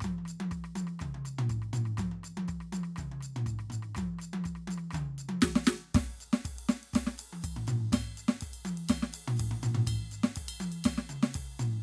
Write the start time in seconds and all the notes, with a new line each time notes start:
0.01 kick, cross-stick, high tom, percussion
0.19 high tom
0.26 cross-stick, percussion
0.41 high tom
0.52 kick, cross-stick, percussion
0.65 cross-stick
0.76 high tom, percussion
0.88 cross-stick
1.00 kick, cross-stick, mid tom, percussion
1.15 mid tom
1.26 cross-stick, percussion
1.39 floor tom
1.50 kick, cross-stick, percussion
1.62 cross-stick
1.74 floor tom, percussion
1.86 cross-stick
1.98 kick, cross-stick, high tom, percussion
2.12 high tom
2.16 high tom
2.24 cross-stick, percussion
2.38 high tom
2.48 kick, cross-stick, percussion
2.61 cross-stick
2.73 high tom, percussion
2.84 cross-stick
2.97 kick, cross-stick, mid tom, percussion
3.12 mid tom
3.21 cross-stick, percussion
3.37 floor tom
3.47 kick, cross-stick, percussion
3.60 cross-stick
3.71 floor tom, percussion
3.83 cross-stick
3.95 kick, cross-stick, high tom, percussion
4.14 high tom
4.19 cross-stick, percussion
4.34 high tom
4.45 kick, cross-stick, percussion
4.56 cross-stick
4.68 high tom, percussion
4.78 cross-stick
4.91 kick, cross-stick, mid tom, percussion
5.19 percussion
5.29 high tom
5.42 kick, snare, percussion
5.56 snare
5.65 snare, percussion
5.95 kick, snare, ride, percussion
6.21 ride, percussion
6.34 snare
6.45 kick, ride, percussion
6.59 ride
6.69 snare, percussion
6.84 ride
6.94 kick, snare, ride, percussion
7.07 snare
7.19 ride, percussion
7.33 high tom
7.43 kick, ride bell, percussion
7.57 floor tom
7.68 floor tom, percussion
7.93 kick, snare, ride bell, percussion
8.18 ride, percussion
8.29 snare
8.41 kick, ride, percussion
8.54 ride bell
8.66 high tom, percussion
8.78 ride
8.89 kick, snare, ride bell, percussion
9.03 snare
9.14 ride, percussion
9.28 floor tom
9.38 kick, ride, percussion
9.52 floor tom
9.64 floor tom, percussion
9.75 floor tom
9.87 kick, ride bell, percussion
10.12 ride, percussion
10.24 snare
10.36 kick, ride, percussion
10.49 ride bell
10.61 high tom, percussion
10.73 ride bell
10.85 kick, snare, ride bell, percussion
10.98 snare
11.10 mid tom, percussion
11.23 snare
11.34 kick, ride, percussion
11.60 floor tom, percussion